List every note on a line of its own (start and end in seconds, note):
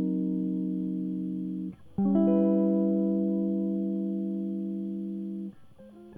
1.99 5.52 G3
2.05 5.49 C#4
2.15 5.49 E4
2.27 4.72 B4